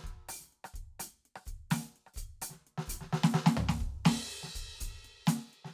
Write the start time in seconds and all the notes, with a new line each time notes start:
0.01 kick, hi-hat pedal
0.08 closed hi-hat
0.29 open hi-hat, cross-stick
0.41 snare
0.53 open hi-hat
0.65 cross-stick, hi-hat pedal
0.75 kick, closed hi-hat
1.00 closed hi-hat, cross-stick
1.26 open hi-hat
1.36 cross-stick
1.46 kick, closed hi-hat, hi-hat pedal
1.71 open hi-hat, snare
1.97 open hi-hat
2.07 cross-stick
2.14 closed hi-hat, kick, hi-hat pedal
2.42 open hi-hat, cross-stick
2.51 snare
2.67 open hi-hat
2.78 snare
2.86 closed hi-hat, kick, hi-hat pedal
3.02 snare
3.13 snare
3.24 snare
3.30 hi-hat pedal
3.35 snare
3.47 snare
3.58 floor tom
3.69 snare
3.79 kick, hi-hat pedal
3.88 kick
3.91 kick
4.06 snare, crash
4.30 closed hi-hat
4.44 snare
4.56 closed hi-hat, kick
4.81 closed hi-hat, kick
4.88 kick, snare
4.93 snare
5.05 closed hi-hat
5.27 closed hi-hat, snare, hi-hat pedal
5.36 snare
5.48 hi-hat pedal
5.54 closed hi-hat
5.65 snare